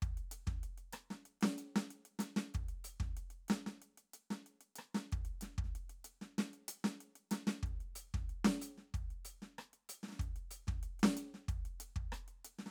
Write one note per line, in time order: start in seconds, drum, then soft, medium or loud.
0.02 kick medium
0.02 closed hi-hat soft
0.17 closed hi-hat soft
0.31 closed hi-hat medium
0.47 kick medium
0.47 snare soft
0.63 closed hi-hat soft
0.78 closed hi-hat soft
0.93 cross-stick medium
0.93 closed hi-hat medium
1.10 snare soft
1.25 closed hi-hat soft
1.41 snare medium
1.41 closed hi-hat soft
1.58 closed hi-hat medium
1.76 snare medium
1.90 closed hi-hat soft
2.05 closed hi-hat soft
2.19 snare medium
2.19 closed hi-hat medium
2.36 snare medium
2.54 kick medium
2.54 closed hi-hat soft
2.68 closed hi-hat soft
2.84 closed hi-hat medium
3.00 kick medium
3.00 snare soft
3.17 closed hi-hat soft
3.30 closed hi-hat soft
3.48 snare medium
3.48 closed hi-hat soft
3.66 snare soft
3.82 closed hi-hat soft
3.97 closed hi-hat soft
4.13 closed hi-hat medium
4.30 snare soft
4.46 closed hi-hat soft
4.61 closed hi-hat soft
4.76 cross-stick medium
4.76 closed hi-hat medium
4.94 snare medium
5.12 kick medium
5.12 closed hi-hat soft
5.25 closed hi-hat soft
5.41 snare soft
5.41 closed hi-hat medium
5.58 kick medium
5.64 snare soft
5.75 closed hi-hat soft
5.89 closed hi-hat soft
6.04 closed hi-hat medium
6.21 snare soft
6.38 snare medium
6.38 closed hi-hat soft
6.53 closed hi-hat soft
6.68 closed hi-hat loud
6.84 snare medium
7.00 closed hi-hat soft
7.15 closed hi-hat soft
7.31 snare medium
7.31 closed hi-hat medium
7.47 snare medium
7.63 kick medium
7.63 closed hi-hat soft
7.80 closed hi-hat soft
7.95 closed hi-hat medium
8.14 kick medium
8.14 snare soft
8.29 closed hi-hat soft
8.44 snare medium
8.44 closed hi-hat soft
8.61 closed hi-hat medium
8.78 snare soft
8.94 kick medium
8.94 closed hi-hat soft
9.10 closed hi-hat soft
9.25 closed hi-hat medium
9.42 snare soft
9.58 cross-stick medium
9.58 closed hi-hat soft
9.73 closed hi-hat soft
9.89 closed hi-hat medium
10.03 snare soft
10.08 snare soft
10.12 snare soft
10.15 snare soft
10.19 kick medium
10.19 snare soft
10.19 closed hi-hat soft
10.36 closed hi-hat soft
10.51 closed hi-hat medium
10.67 kick medium
10.67 snare soft
10.83 closed hi-hat soft
10.99 snare loud
10.99 closed hi-hat soft
11.17 closed hi-hat medium
11.34 snare soft
11.48 kick medium
11.48 closed hi-hat soft
11.65 closed hi-hat soft
11.80 closed hi-hat medium
11.96 kick medium
12.12 cross-stick medium
12.12 closed hi-hat soft
12.28 closed hi-hat soft
12.45 closed hi-hat medium
12.59 snare soft
12.66 snare soft